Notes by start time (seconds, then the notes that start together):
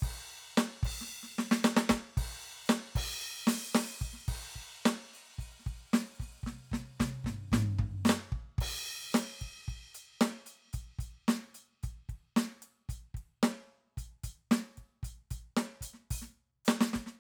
0.01 kick, hi-hat pedal, crash
0.27 closed hi-hat
0.58 snare
0.84 kick, crash
1.02 snare
1.07 hi-hat pedal
1.11 closed hi-hat
1.24 snare
1.39 snare
1.52 snare
1.64 snare, hi-hat pedal
1.77 snare
1.90 kick, snare
2.18 kick, crash
2.42 open hi-hat
2.67 snare, hi-hat pedal
2.96 kick, crash
3.21 open hi-hat
3.48 open hi-hat, snare
3.75 open hi-hat, snare
4.02 kick
4.14 snare
4.29 kick, crash
4.56 kick
4.86 snare
5.14 open hi-hat
5.39 open hi-hat, kick
5.60 snare
5.67 open hi-hat, kick
5.94 open hi-hat, snare
6.20 open hi-hat, kick, snare
6.44 kick, snare
6.48 mid tom
6.72 kick, snare, mid tom
7.00 kick, snare, mid tom
7.25 kick, snare, floor tom
7.53 kick, snare, floor tom
7.79 kick, floor tom
8.06 snare, hi-hat pedal
8.10 snare
8.33 kick
8.59 kick, crash
9.12 closed hi-hat, snare, hi-hat pedal
9.42 kick, closed hi-hat
9.69 kick, closed hi-hat
9.95 closed hi-hat
10.22 snare
10.26 snare
10.47 closed hi-hat
10.68 snare
10.74 closed hi-hat, kick
10.99 closed hi-hat, kick
11.29 snare
11.55 closed hi-hat
11.84 closed hi-hat, kick
12.10 kick, closed hi-hat
12.37 snare
12.63 closed hi-hat
12.90 closed hi-hat, kick
13.15 kick, closed hi-hat
13.44 snare
13.98 closed hi-hat, kick
14.24 closed hi-hat, kick
14.52 snare
14.78 kick, closed hi-hat
15.04 closed hi-hat, kick
15.31 closed hi-hat, kick
15.57 snare
15.82 closed hi-hat, kick
15.94 snare
16.00 snare
16.11 open hi-hat, kick
16.22 snare
16.66 snare, hi-hat pedal
16.81 snare
16.94 kick, snare
17.07 snare